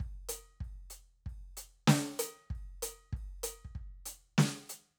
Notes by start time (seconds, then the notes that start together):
0.00 kick, crash
0.29 closed hi-hat
0.61 kick, crash
0.90 closed hi-hat
1.26 kick, crash
1.57 closed hi-hat
1.88 snare
2.19 closed hi-hat
2.50 kick
2.55 crash, ride
2.82 closed hi-hat
3.13 kick, crash
3.43 closed hi-hat
3.65 kick
3.75 kick
4.06 closed hi-hat
4.38 snare
4.69 closed hi-hat